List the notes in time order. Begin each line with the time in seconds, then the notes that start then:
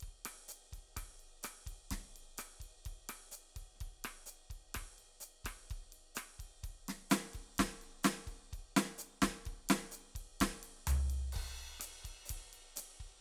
0.01 kick, ride
0.08 kick
0.25 cross-stick, ride
0.49 hi-hat pedal, ride
0.73 kick, ride
0.78 kick
0.97 kick, cross-stick, ride
1.03 kick
1.20 ride
1.43 cross-stick, hi-hat pedal, ride
1.67 kick, ride
1.72 kick
1.91 kick, snare, ride
1.97 kick
2.16 ride
2.38 cross-stick, hi-hat pedal, ride
2.60 kick, ride
2.66 kick
2.86 kick, ride
2.92 kick
3.09 cross-stick, ride
3.32 hi-hat pedal, ride
3.56 kick, ride
3.62 kick
3.76 snare
3.81 kick, ride
3.87 kick
4.05 cross-stick, ride
4.26 hi-hat pedal, ride
4.50 kick, ride
4.56 kick
4.75 kick, cross-stick, ride
4.82 kick
4.99 ride
5.21 hi-hat pedal, ride
5.45 kick, cross-stick, ride
5.50 kick
5.71 kick, ride
5.77 kick
5.83 snare
5.93 ride
6.15 cross-stick, hi-hat pedal, ride
6.40 kick, ride
6.45 kick
6.64 kick, ride
6.69 kick
6.89 snare, ride
7.10 snare, hi-hat pedal, ride
7.34 kick, ride
7.40 kick
7.54 hi-hat pedal
7.59 kick, snare, ride
7.65 kick
7.82 ride
8.04 snare, hi-hat pedal, ride
8.27 kick, ride
8.32 kick
8.53 kick, ride
8.59 kick
8.77 snare, ride
8.86 snare
8.99 hi-hat pedal, ride
9.22 kick, snare, ride
9.28 kick
9.46 kick, ride
9.52 kick
9.69 snare, ride
9.92 hi-hat pedal, ride
10.16 kick, ride
10.21 kick
10.41 kick, snare, ride
10.47 kick
10.63 ride
10.87 floor tom, hi-hat pedal, ride
11.10 ride
11.33 kick, crash
11.42 kick
11.80 cross-stick, snare, hi-hat pedal, ride
12.05 kick, ride
12.10 kick
12.26 snare, hi-hat pedal
12.30 kick, ride
12.36 kick
12.53 ride
12.76 snare, hi-hat pedal, ride
13.00 kick, ride
13.06 kick